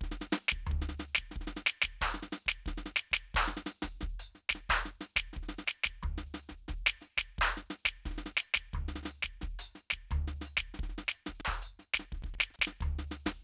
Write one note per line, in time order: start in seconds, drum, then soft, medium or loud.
0.01 kick soft
0.01 snare soft
0.12 snare soft
0.21 snare soft
0.32 snare loud
0.32 hi-hat pedal soft
0.48 kick soft
0.48 snare loud
0.67 floor tom loud
0.71 kick soft
0.82 snare soft
0.89 snare soft
0.99 snare medium
0.99 hi-hat pedal soft
1.15 kick soft
1.15 snare loud
1.31 snare soft
1.36 kick soft
1.41 snare soft
1.47 snare medium
1.57 snare soft
1.66 snare loud
1.66 hi-hat pedal soft
1.82 kick soft
1.82 snare loud
2.01 kick soft
2.01 percussion medium
2.14 snare soft
2.23 snare soft
2.32 snare medium
2.32 hi-hat pedal medium
2.46 kick soft
2.46 snare medium
2.66 kick soft
2.66 snare soft
2.78 snare soft
2.86 snare soft
2.96 snare medium
2.96 hi-hat pedal soft
3.12 kick soft
3.12 snare loud
3.35 kick soft
3.35 percussion loud
3.48 snare medium
3.57 snare medium
3.66 snare medium
3.66 hi-hat pedal soft
3.82 kick soft
3.82 snare medium
4.01 kick soft
4.01 snare soft
4.20 open hi-hat medium
4.35 snare soft
4.35 hi-hat pedal soft
4.49 kick soft
4.49 snare medium
4.55 snare soft
4.70 kick soft
4.70 percussion loud
4.86 snare soft
5.01 snare soft
5.01 hi-hat pedal medium
5.16 kick soft
5.16 snare medium
5.33 kick soft
5.33 snare soft
5.43 snare soft
5.49 snare soft
5.59 snare soft
5.67 snare medium
5.67 hi-hat pedal medium
5.84 kick soft
5.84 snare medium
6.03 kick soft
6.03 floor tom medium
6.18 snare soft
6.34 snare soft
6.34 hi-hat pedal medium
6.49 kick soft
6.49 snare soft
6.68 kick soft
6.68 snare soft
6.86 snare loud
7.01 snare soft
7.01 hi-hat pedal soft
7.18 kick soft
7.18 snare medium
7.38 kick soft
7.38 percussion loud
7.57 snare soft
7.70 snare medium
7.70 hi-hat pedal soft
7.85 kick soft
7.85 snare medium
8.06 kick soft
8.06 snare soft
8.11 snare soft
8.16 snare soft
8.18 snare soft
8.26 snare soft
8.37 snare medium
8.37 hi-hat pedal soft
8.54 kick soft
8.54 snare loud
8.74 kick soft
8.74 floor tom medium
8.88 snare soft
8.96 snare soft
9.03 snare soft
9.05 snare medium
9.05 hi-hat pedal soft
9.23 kick soft
9.23 snare medium
9.41 kick soft
9.41 snare soft
9.59 closed hi-hat loud
9.75 snare soft
9.75 hi-hat pedal soft
9.90 kick soft
9.90 snare medium
10.11 kick soft
10.11 floor tom loud
10.28 snare soft
10.41 snare soft
10.41 hi-hat pedal medium
10.57 kick soft
10.57 snare medium
10.74 snare soft
10.79 kick soft
10.79 snare soft
10.89 snare soft
10.98 snare soft
11.08 snare medium
11.12 hi-hat pedal soft
11.26 kick soft
11.26 snare medium
11.45 kick soft
11.45 percussion medium
11.62 closed hi-hat medium
11.79 snare soft
11.79 hi-hat pedal soft
11.94 kick soft
11.94 snare medium
12.00 snare soft
12.12 kick soft
12.12 snare soft
12.29 snare loud
12.43 snare soft
12.43 hi-hat pedal medium
12.59 kick soft
12.59 snare loud
12.67 snare soft
12.81 kick soft
12.81 floor tom medium
12.99 snare soft
13.11 snare soft
13.11 hi-hat pedal medium
13.26 kick soft
13.26 snare medium